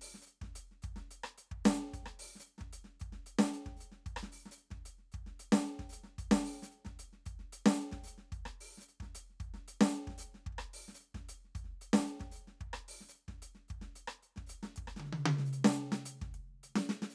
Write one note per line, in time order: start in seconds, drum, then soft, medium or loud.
0.01 open hi-hat medium
0.14 snare soft
0.22 hi-hat pedal medium
0.27 closed hi-hat soft
0.41 kick soft
0.41 snare soft
0.55 closed hi-hat medium
0.71 snare soft
0.82 closed hi-hat soft
0.82 kick soft
0.96 snare soft
1.10 closed hi-hat medium
1.23 cross-stick medium
1.37 closed hi-hat medium
1.51 kick soft
1.65 closed hi-hat medium
1.65 snare loud
1.65 hi-hat pedal medium
1.93 closed hi-hat soft
1.93 kick soft
2.01 kick soft
2.06 cross-stick medium
2.19 open hi-hat medium
2.35 snare soft
2.40 hi-hat pedal medium
2.46 closed hi-hat soft
2.58 kick soft
2.58 snare soft
2.73 closed hi-hat medium
2.84 snare soft
3.00 closed hi-hat soft
3.00 kick soft
3.12 snare soft
3.26 closed hi-hat medium
3.39 snare medium
3.45 snare soft
3.53 closed hi-hat soft
3.66 kick soft
3.66 snare soft
3.71 kick soft
3.76 closed hi-hat soft
3.76 hi-hat pedal soft
3.92 snare soft
4.06 closed hi-hat soft
4.06 kick soft
4.16 cross-stick medium
4.23 snare soft
4.32 open hi-hat medium
4.45 snare soft
4.51 hi-hat pedal medium
4.57 closed hi-hat soft
4.70 kick soft
4.70 snare soft
4.77 kick soft
4.85 closed hi-hat medium
4.98 snare soft
5.12 closed hi-hat soft
5.12 kick soft
5.26 snare soft
5.39 closed hi-hat medium
5.52 snare loud
5.66 closed hi-hat soft
5.79 kick soft
5.79 snare soft
5.89 closed hi-hat medium
5.89 hi-hat pedal soft
6.03 snare soft
6.18 closed hi-hat soft
6.18 kick soft
6.31 snare loud
6.44 open hi-hat medium
6.62 snare soft
6.62 hi-hat pedal medium
6.71 closed hi-hat soft
6.85 kick soft
6.85 snare soft
6.99 closed hi-hat medium
7.13 snare soft
7.26 closed hi-hat soft
7.26 kick soft
7.39 snare soft
7.52 closed hi-hat medium
7.66 snare loud
7.80 closed hi-hat soft
7.91 kick soft
7.91 snare soft
7.97 kick soft
8.03 closed hi-hat soft
8.03 hi-hat pedal medium
8.18 snare soft
8.32 closed hi-hat soft
8.32 kick soft
8.45 cross-stick medium
8.60 open hi-hat medium
8.77 snare soft
8.77 hi-hat pedal medium
8.88 closed hi-hat soft
9.00 kick soft
9.00 snare soft
9.05 kick soft
9.15 closed hi-hat medium
9.30 snare soft
9.40 closed hi-hat soft
9.40 kick soft
9.54 snare soft
9.68 closed hi-hat medium
9.81 snare loud
9.94 closed hi-hat soft
10.07 kick soft
10.07 snare soft
10.18 closed hi-hat soft
10.18 hi-hat pedal medium
10.34 snare soft
10.46 kick soft
10.52 kick soft
10.58 cross-stick medium
10.73 open hi-hat medium
10.88 snare soft
10.94 hi-hat pedal medium
11.00 closed hi-hat soft
11.14 kick soft
11.14 snare soft
11.28 closed hi-hat medium
11.44 snare soft
11.55 closed hi-hat soft
11.55 kick soft
11.64 snare soft
11.70 snare soft
11.81 closed hi-hat soft
11.93 snare loud
11.98 snare soft
12.07 closed hi-hat soft
12.19 kick soft
12.19 snare soft
12.31 closed hi-hat soft
12.31 hi-hat pedal soft
12.47 snare soft
12.60 closed hi-hat soft
12.60 kick soft
12.73 cross-stick medium
12.88 open hi-hat medium
13.00 snare soft
13.08 hi-hat pedal medium
13.15 closed hi-hat soft
13.28 kick soft
13.28 snare soft
13.42 closed hi-hat medium
13.55 snare soft
13.68 closed hi-hat soft
13.68 kick soft
13.81 snare soft
13.95 closed hi-hat soft
14.07 cross-stick medium
14.22 closed hi-hat soft
14.36 kick soft
14.36 snare soft
14.46 closed hi-hat medium
14.46 hi-hat pedal soft
14.63 snare soft
14.76 kick soft
14.76 closed hi-hat medium
14.87 cross-stick medium
14.96 snare soft
14.96 high tom medium
15.05 snare soft
15.12 high tom medium
15.26 high tom loud
15.38 snare soft
15.45 hi-hat pedal soft
15.53 closed hi-hat medium
15.64 snare loud
15.92 snare medium
16.05 closed hi-hat medium
16.21 kick soft
16.21 snare soft
16.34 closed hi-hat soft
16.63 closed hi-hat medium
16.75 snare medium
16.89 snare medium
17.02 snare medium
17.10 hi-hat pedal soft